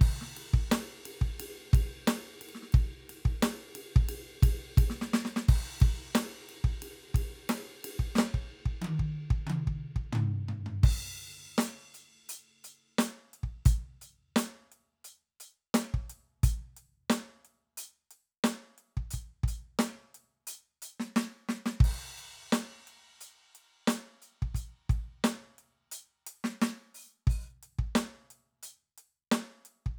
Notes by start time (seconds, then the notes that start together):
0.01 kick, crash
0.21 snare
0.37 ride
0.54 kick
0.71 snare, ride
1.06 ride
1.21 kick
1.40 ride
1.73 kick, ride
2.07 snare, ride
2.41 ride
2.49 ride
2.55 snare
2.62 snare
2.72 kick, ride
3.10 ride
3.25 kick
3.42 snare, ride
3.75 ride
3.96 kick
4.09 ride
4.43 kick, ride
4.77 kick, ride
4.90 snare
5.01 snare
5.13 snare
5.25 snare
5.36 snare
5.49 kick, crash
5.80 kick, ride
6.15 snare, ride
6.49 ride
6.64 kick, snare
6.82 ride
7.14 kick, ride
7.49 snare, ride
7.84 ride
7.99 kick
8.15 snare
8.18 snare
8.34 kick
8.66 kick, snare
8.82 high tom
8.84 high tom
8.99 kick
9.30 kick, snare
9.47 mid tom, high tom
9.67 kick
9.96 kick
10.13 floor tom, mid tom
10.49 floor tom
10.66 floor tom
10.83 kick, crash
11.16 open hi-hat
11.58 closed hi-hat, snare
11.94 closed hi-hat
12.29 closed hi-hat
12.64 closed hi-hat
12.98 closed hi-hat, snare
13.33 closed hi-hat
13.43 kick
13.65 closed hi-hat, kick
14.01 closed hi-hat
14.36 closed hi-hat, snare
14.72 closed hi-hat
15.04 closed hi-hat
15.40 closed hi-hat
15.74 closed hi-hat, snare
15.94 kick
16.10 closed hi-hat
16.43 closed hi-hat, kick
16.77 closed hi-hat
17.10 closed hi-hat, snare
17.45 closed hi-hat
17.77 closed hi-hat
18.11 closed hi-hat
18.44 closed hi-hat, snare
18.78 closed hi-hat
18.97 kick
19.11 closed hi-hat, kick
19.43 kick, snare
19.48 closed hi-hat
19.79 closed hi-hat, snare
20.14 closed hi-hat
20.47 closed hi-hat
20.82 closed hi-hat
21.00 snare
21.16 snare
21.49 snare
21.66 snare
21.80 kick, snare, crash
22.17 closed hi-hat
22.52 closed hi-hat, snare
22.87 closed hi-hat
23.21 closed hi-hat
23.55 closed hi-hat
23.87 closed hi-hat, snare
24.22 closed hi-hat
24.42 kick
24.55 closed hi-hat, kick
24.89 kick, closed hi-hat
25.24 closed hi-hat, snare
25.58 closed hi-hat
25.92 closed hi-hat
26.27 closed hi-hat
26.44 snare
26.62 snare
26.94 open hi-hat
27.27 open hi-hat, kick
27.63 closed hi-hat
27.79 kick
27.95 closed hi-hat, snare
28.30 closed hi-hat
28.63 closed hi-hat
28.98 closed hi-hat
29.32 snare, closed hi-hat
29.65 closed hi-hat
29.86 kick